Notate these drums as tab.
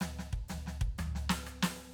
Hi-hat    |p--p--p--po-|
Snare     |oo-oo-rooro-|
Floor tom |oo-oo-o-----|
Kick      |--o--o------|